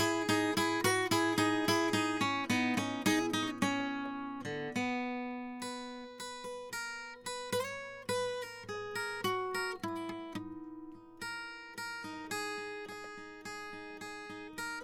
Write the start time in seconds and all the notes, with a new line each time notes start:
0.00 E4 G#4
0.29 D#4 G#4
0.57 E4 G#4
0.85 F#4 B4
1.12 E4 G#4
1.38 D#4 G#4
1.69 E4 G#4
1.94 D#4
2.21 C#4
2.50 B3 D#4
2.78 C#4
3.03 B3 D#4
3.07 G#4
3.34 D#4
3.43 C#4
3.62 C#4 D#4
4.42 B3
4.46 D3
4.76 B3
5.62 B4
6.21 B4
6.45 B4
6.74 A#4
7.27 B4
7.53 B4
7.65 C#5
8.09 B4
8.69 G#4
8.96 A#4
9.25 F#4
9.55 A#4
9.84 E4
10.36 D#4
11.22 A#4
11.78 A#4
12.05 D#4
12.32 G#4
12.90 G#4
13.19 D#4
13.46 G#4
13.74 D#4
14.02 G#4
14.30 D#4
14.59 A#4